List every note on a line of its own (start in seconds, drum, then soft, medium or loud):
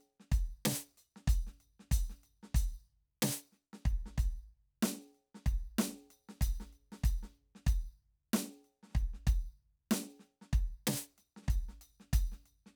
0.01 closed hi-hat soft
0.20 snare soft
0.32 closed hi-hat medium
0.32 kick medium
0.66 closed hi-hat loud
0.66 snare loud
0.96 closed hi-hat soft
0.96 snare soft
1.16 snare soft
1.28 closed hi-hat medium
1.28 kick medium
1.47 snare soft
1.61 closed hi-hat soft
1.80 snare soft
1.92 closed hi-hat loud
1.92 kick medium
2.10 snare soft
2.24 closed hi-hat soft
2.43 snare soft
2.55 closed hi-hat loud
2.55 kick medium
3.22 closed hi-hat loud
3.22 snare loud
3.53 snare soft
3.53 closed hi-hat soft
3.73 snare soft
3.86 kick medium
3.86 closed hi-hat soft
4.06 snare soft
4.18 closed hi-hat medium
4.18 kick medium
4.83 closed hi-hat medium
4.83 snare loud
5.15 closed hi-hat soft
5.35 snare soft
5.46 kick medium
5.46 closed hi-hat medium
5.79 snare loud
5.79 closed hi-hat medium
6.10 snare soft
6.10 closed hi-hat soft
6.29 snare soft
6.41 kick medium
6.41 closed hi-hat loud
6.60 snare soft
6.73 closed hi-hat soft
6.92 snare medium
7.04 kick medium
7.04 closed hi-hat medium
7.23 snare soft
7.34 closed hi-hat soft
7.55 snare soft
7.67 kick medium
7.67 closed hi-hat medium
8.34 snare loud
8.34 closed hi-hat medium
8.64 snare soft
8.64 closed hi-hat soft
8.83 snare soft
8.88 snare soft
8.91 snare soft
8.94 kick medium
8.94 snare soft
8.94 closed hi-hat soft
9.14 snare soft
9.27 kick medium
9.27 closed hi-hat medium
9.91 snare loud
9.91 closed hi-hat medium
10.20 snare soft
10.20 closed hi-hat soft
10.42 snare soft
10.53 kick medium
10.53 closed hi-hat medium
10.87 snare loud
10.87 closed hi-hat medium
11.18 snare soft
11.18 closed hi-hat soft
11.37 snare soft
11.42 snare soft
11.47 kick medium
11.47 snare soft
11.47 closed hi-hat medium
11.69 snare soft
11.82 closed hi-hat medium
12.00 snare soft
12.13 kick medium
12.13 closed hi-hat loud
12.32 snare soft
12.43 snare soft
12.43 closed hi-hat soft
12.66 snare soft